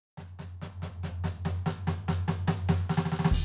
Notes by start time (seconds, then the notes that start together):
0.18 snare, floor tom
0.40 snare, floor tom
0.63 snare, floor tom
0.83 snare, floor tom
1.04 snare, floor tom
1.25 snare, floor tom
1.46 snare, floor tom
1.67 snare, floor tom
1.88 snare, floor tom
2.09 snare, floor tom
2.29 snare, floor tom
2.48 snare, floor tom
2.70 snare, floor tom
2.91 snare
2.98 snare
3.06 snare
3.13 snare
3.20 snare
3.26 snare
3.32 kick, crash